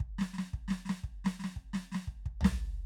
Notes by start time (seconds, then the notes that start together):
0.01 kick
0.19 snare
0.21 snare
0.34 snare
0.39 snare
0.54 kick
0.68 snare
0.71 snare
0.86 snare
0.90 snare
1.04 kick
1.25 snare
1.26 snare
1.40 snare
1.44 snare
1.57 kick
1.74 snare
1.92 snare
1.95 snare
2.08 kick
2.26 kick
2.41 snare, floor tom